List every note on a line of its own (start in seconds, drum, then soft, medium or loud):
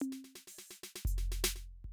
0.00 hi-hat pedal medium
0.00 high tom loud
0.12 snare soft
0.24 snare soft
0.35 snare soft
0.47 snare soft
0.47 hi-hat pedal medium
0.58 snare soft
0.71 snare soft
0.83 snare medium
0.96 snare medium
1.05 open hi-hat medium
1.05 kick medium
1.18 snare soft
1.32 snare medium
1.44 snare loud
1.56 snare soft
1.84 kick soft